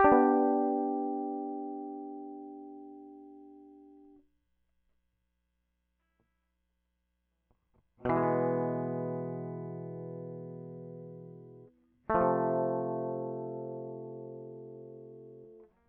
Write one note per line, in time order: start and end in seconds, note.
0.00 4.24 G4
0.05 4.24 D4
0.13 4.09 B3
8.07 11.70 B2
8.07 11.70 E3
8.17 11.71 G#3
12.11 15.75 A3
12.16 15.69 F3
12.23 15.50 C3